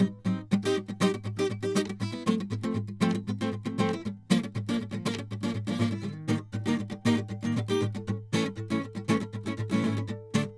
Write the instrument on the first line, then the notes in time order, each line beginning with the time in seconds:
acoustic guitar
0.01 C4 D#4
0.27 C4 D#4
0.66 C4 D#4 G4
1.03 D#4 G4
1.39 D#4 G4
1.63 G4
1.77 D#4 G4
2.01 B3 E4
2.13 B3 E4
2.28 A3 C4
2.65 F3 A3 C4
3.01 F3 A3 C4 F4
3.42 F3 A3 C4
3.65 A3 C4
3.79 F3 A3 C4 F4
3.94 E4
4.31 F3 A#3
4.70 F3 A#3 D4
4.95 F3
5.06 A#3
5.44 E3 A#3 D4
5.68 F3 A#3 D4
5.80 F3 A#3 D4
6.29 D#3 A#3 D#4
6.68 D#3 A#3 D#4
7.06 D#3 A#3 D#4 G4
7.43 D#3 A#3 D#4
7.70 D#4 G4
8.09 C#4
8.34 E3 A3 C#4 E4
8.71 E3 A3 C#4 E4
9.09 E3 A3 C#4 E4
9.48 C#4 E4
9.72 A2 E3 A3 C#4 E4
9.85 E3 A3 C#4 E4
10.35 D3 A3 D4